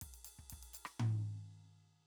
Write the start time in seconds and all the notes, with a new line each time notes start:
0.01 kick, ride
0.14 ride
0.24 ride, percussion
0.38 kick
0.50 kick, ride
0.63 ride
0.73 ride, percussion
0.85 cross-stick
0.99 floor tom